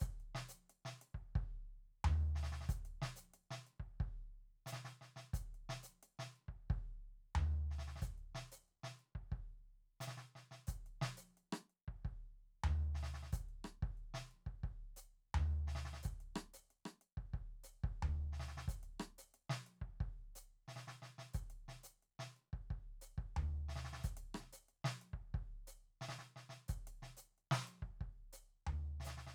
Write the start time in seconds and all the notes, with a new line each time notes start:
0.01 kick, hi-hat pedal
0.21 closed hi-hat
0.36 snare
0.49 hi-hat pedal
0.70 closed hi-hat
0.86 snare
1.02 closed hi-hat
1.15 kick
1.36 kick
2.05 floor tom
2.36 snare
2.44 snare
2.53 snare
2.62 snare
2.70 kick, hi-hat pedal
2.86 closed hi-hat
3.03 snare
3.17 hi-hat pedal
3.34 closed hi-hat
3.51 snare
3.67 closed hi-hat
3.80 kick
4.01 kick
4.67 snare, hi-hat pedal
4.73 snare
4.85 snare
5.02 snare
5.17 snare
5.34 kick, hi-hat pedal
5.55 closed hi-hat
5.70 snare
5.84 hi-hat pedal
6.03 closed hi-hat
6.20 snare
6.36 closed hi-hat
6.49 kick
6.71 kick
7.36 floor tom
7.72 snare
7.79 snare
7.88 snare
7.97 snare
8.03 kick, hi-hat pedal
8.18 closed hi-hat
8.36 snare
8.53 hi-hat pedal
8.69 closed hi-hat
8.84 snare
9.00 closed hi-hat
9.16 kick
9.33 kick
10.01 snare, hi-hat pedal
10.08 snare
10.18 snare
10.36 snare
10.52 snare
10.68 kick, hi-hat pedal
10.87 closed hi-hat
11.02 snare
11.18 hi-hat pedal
11.38 closed hi-hat
11.53 cross-stick
11.70 closed hi-hat
11.88 kick
12.06 kick
12.64 floor tom
12.95 snare
13.03 snare
13.14 snare
13.23 snare
13.33 kick, hi-hat pedal
13.49 closed hi-hat
13.65 cross-stick
13.83 kick
13.98 closed hi-hat
14.15 snare
14.32 closed hi-hat
14.47 kick
14.64 kick
14.97 hi-hat pedal
15.35 floor tom
15.68 snare
15.76 snare
15.86 snare
15.94 snare
16.04 kick, hi-hat pedal
16.21 closed hi-hat
16.36 cross-stick
16.54 hi-hat pedal
16.71 closed hi-hat
16.86 cross-stick
17.02 closed hi-hat
17.18 kick
17.34 kick
17.64 hi-hat pedal
17.84 kick
18.03 floor tom
18.33 snare
18.40 snare
18.49 snare
18.58 snare
18.68 kick, hi-hat pedal
18.84 closed hi-hat
19.00 cross-stick
19.19 hi-hat pedal
19.35 closed hi-hat
19.50 snare
19.67 closed hi-hat
19.82 kick
20.01 kick
20.36 hi-hat pedal
20.69 snare
20.77 snare
20.88 snare
21.03 snare
21.19 snare
21.34 kick, hi-hat pedal
21.51 closed hi-hat
21.69 snare
21.84 hi-hat pedal
22.03 open hi-hat
22.20 snare
22.37 closed hi-hat
22.54 kick
22.71 kick
23.02 hi-hat pedal
23.18 kick
23.37 floor tom
23.69 snare
23.76 snare
23.85 snare
23.93 snare
23.99 snare
24.04 kick, hi-hat pedal
24.18 closed hi-hat
24.35 cross-stick
24.40 snare
24.53 hi-hat pedal
24.69 closed hi-hat
24.85 snare
25.02 closed hi-hat
25.14 kick
25.35 kick
25.68 hi-hat pedal
26.02 snare
26.09 snare
26.19 snare
26.37 snare
26.50 snare
26.69 kick, hi-hat pedal
26.88 open hi-hat
27.03 snare
27.18 hi-hat pedal
27.39 closed hi-hat
27.52 snare
27.68 closed hi-hat
27.83 kick
28.02 kick
28.33 hi-hat pedal
28.67 floor tom
29.01 snare
29.05 snare, hi-hat pedal
29.18 snare
29.27 snare